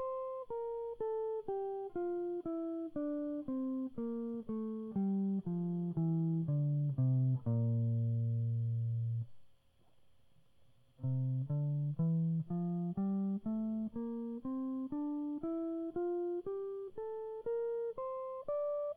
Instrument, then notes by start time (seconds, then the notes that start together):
electric guitar
0.00 C5
0.51 A#4
1.01 A4
1.49 G4
1.96 F4
2.46 E4
2.97 D4
3.49 C4
3.99 A#3
4.50 A3
4.97 G3
5.48 F3
5.98 E3
6.50 D3
7.01 C3
7.48 A#2
11.05 C3
11.52 D3
12.01 E3
12.52 F3
12.98 G3
13.47 A3
13.97 A#3
14.46 C4
14.93 D4
15.44 E4
15.97 F4
16.47 G4
16.98 A4
17.47 A#4
17.99 C5
18.49 D5